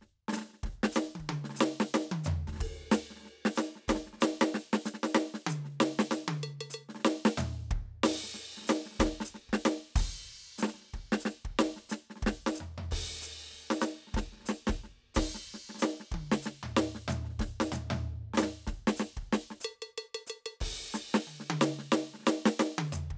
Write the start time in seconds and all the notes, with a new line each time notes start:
0.02 snare
0.29 snare
0.33 snare, hi-hat pedal
0.37 snare
0.41 snare
0.45 snare
0.49 snare
0.54 snare
0.58 snare
0.64 kick, snare
0.84 snare
0.92 hi-hat pedal
0.96 snare
1.16 high tom
1.20 kick
1.30 high tom
1.45 snare
1.50 snare
1.54 snare, hi-hat pedal
1.59 snare
1.61 snare
1.81 snare
1.95 snare
2.12 high tom
2.24 floor tom, hi-hat pedal
2.48 kick, snare
2.52 snare
2.56 snare
2.58 snare
2.60 kick, snare, ride
2.92 snare, hi-hat pedal
3.11 snare
3.16 snare
3.20 snare
3.24 snare
3.26 snare
3.46 snare
3.56 snare, hi-hat pedal
3.76 snare
3.89 kick, snare
3.95 snare
4.07 snare
4.13 snare
4.18 snare, hi-hat pedal
4.21 snare
4.42 snare
4.55 snare
4.74 snare
4.86 snare, hi-hat pedal
4.94 snare
5.04 snare
5.15 snare
5.34 snare
5.47 hi-hat pedal, high tom
5.65 snare
5.81 snare
5.99 snare
6.12 snare, hi-hat pedal
6.28 high tom
6.44 percussion
6.61 percussion
6.70 hi-hat pedal
6.74 percussion
6.89 snare
6.95 snare
7.00 snare
7.05 snare
7.26 snare
7.38 hi-hat pedal, floor tom
7.71 kick
8.04 snare, hi-hat pedal, ride
8.24 snare
8.35 snare
8.58 snare
8.62 snare
8.65 snare, hi-hat pedal
8.68 snare
8.70 snare
8.86 snare
8.92 snare
8.95 snare
8.99 kick, snare
9.05 snare
9.21 snare
9.25 hi-hat pedal
9.35 snare
9.49 kick
9.53 snare
9.66 snare
9.96 kick, snare, hi-hat pedal, crash
10.18 crash
10.58 snare, hi-hat pedal
10.63 snare
10.68 snare
10.74 snare
10.78 snare
10.81 snare
10.85 snare
10.94 kick, snare
11.13 snare
11.20 hi-hat pedal
11.26 snare
11.45 kick
11.59 snare
11.77 snare
11.90 snare, hi-hat pedal
12.10 snare
12.16 snare
12.20 kick, snare
12.24 snare
12.27 snare
12.47 snare
12.55 hi-hat pedal
12.61 floor tom
12.78 floor tom
12.92 kick, ride
13.23 hi-hat pedal
13.52 kick, snare
13.71 snare
13.81 snare, hi-hat pedal
14.08 snare
14.12 kick, snare
14.15 snare
14.17 snare
14.33 snare
14.37 snare
14.40 snare
14.44 snare, hi-hat pedal
14.49 snare
14.67 kick, snare
14.84 snare
15.15 kick, snare, hi-hat pedal, crash
15.35 snare
15.54 snare
15.70 snare
15.75 snare
15.78 snare, hi-hat pedal
15.82 snare
16.00 snare
16.12 kick, high tom
16.32 snare
16.43 snare, hi-hat pedal
16.63 floor tom
16.71 kick
16.77 snare
16.95 snare
17.08 hi-hat pedal, floor tom
17.25 snare
17.30 snare
17.40 kick, snare
17.61 snare
17.72 hi-hat pedal, floor tom
17.91 floor tom
18.34 snare
18.38 snare, hi-hat pedal
18.42 snare
18.46 snare
18.51 snare
18.56 snare
18.60 snare
18.65 kick, cross-stick, snare
18.88 snare
18.97 snare, hi-hat pedal
19.17 kick
19.33 snare
19.51 snare
19.61 hi-hat pedal
19.65 percussion
19.83 percussion
19.98 percussion
20.15 percussion
20.27 hi-hat pedal, percussion
20.46 percussion
20.61 kick, ride
20.94 snare, hi-hat pedal
21.15 snare
21.27 high tom
21.40 snare
21.50 high tom
21.61 snare, hi-hat pedal
21.79 snare
21.92 snare
22.14 snare
22.19 snare
22.23 snare
22.26 snare, hi-hat pedal
22.46 snare
22.60 snare
22.79 high tom
22.93 floor tom, hi-hat pedal
23.11 kick